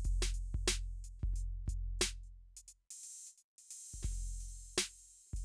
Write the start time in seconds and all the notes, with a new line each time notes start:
0.05 closed hi-hat, kick
0.23 snare
0.34 closed hi-hat
0.55 kick
0.68 closed hi-hat, snare
1.04 closed hi-hat
1.20 kick, snare
1.34 open hi-hat, kick
1.66 closed hi-hat, kick, snare, hi-hat pedal
2.00 closed hi-hat, snare, hi-hat pedal
2.24 hi-hat pedal
2.57 closed hi-hat
2.68 closed hi-hat
2.91 open hi-hat
3.04 open hi-hat
3.25 closed hi-hat, hi-hat pedal
3.38 closed hi-hat
3.59 open hi-hat
3.71 open hi-hat
3.94 kick
4.03 kick, snare, crash
4.12 snare
4.18 snare
4.41 open hi-hat
4.78 open hi-hat, snare
5.27 snare
5.34 open hi-hat, kick